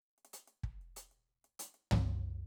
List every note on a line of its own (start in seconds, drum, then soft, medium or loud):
0.18 closed hi-hat soft
0.25 closed hi-hat soft
0.33 closed hi-hat medium
0.47 closed hi-hat soft
0.63 kick soft
0.81 closed hi-hat soft
0.96 closed hi-hat medium
1.11 closed hi-hat soft
1.44 closed hi-hat soft
1.59 closed hi-hat loud
1.74 closed hi-hat soft
1.91 kick soft
1.91 floor tom loud